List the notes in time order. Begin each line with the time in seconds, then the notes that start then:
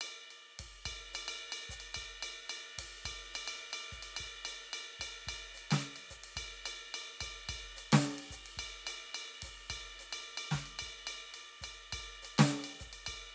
0.02 hi-hat pedal, ride bell
0.30 ride bell
0.59 kick, hi-hat pedal, ride
0.85 kick, ride bell
1.13 hi-hat pedal, ride bell
1.28 ride bell
1.52 ride bell
1.69 kick, hi-hat pedal
1.80 ride bell
1.94 kick, ride bell
2.22 hi-hat pedal, ride bell
2.49 ride bell
2.78 kick, hi-hat pedal, ride
3.05 kick, ride bell
3.10 kick
3.34 hi-hat pedal, ride bell
3.47 ride bell
3.73 ride bell
3.92 kick, hi-hat pedal
4.02 ride bell
4.16 kick, ride bell
4.45 hi-hat pedal, ride bell
4.73 ride bell
4.99 kick, hi-hat pedal, ride bell
5.27 kick, ride bell
5.54 hi-hat pedal, ride bell
5.71 snare, ride bell
5.96 ride bell
6.10 kick, hi-hat pedal
6.23 ride
6.36 kick, ride bell
6.65 hi-hat pedal, ride bell
6.94 ride bell
7.20 kick, hi-hat pedal, ride bell
7.49 kick, ride bell
7.76 hi-hat pedal, ride bell
7.92 kick, snare, closed hi-hat, ride
8.18 ride
8.30 kick, hi-hat pedal
8.46 ride
8.57 kick, ride bell
8.87 hi-hat pedal, ride bell
9.14 ride bell
9.42 kick, hi-hat pedal, ride
9.70 kick, ride bell
9.78 kick
9.99 hi-hat pedal, ride bell
10.13 ride bell
10.37 ride bell
10.51 kick, snare
10.57 hi-hat pedal
10.66 ride bell
10.79 kick, ride bell
11.07 hi-hat pedal, ride bell
11.34 ride bell
11.61 kick, hi-hat pedal, ride bell
11.92 kick, ride bell
12.22 hi-hat pedal, ride bell
12.38 snare, ride bell
12.64 ride bell
12.80 kick, hi-hat pedal
12.93 ride bell
13.06 kick, ride bell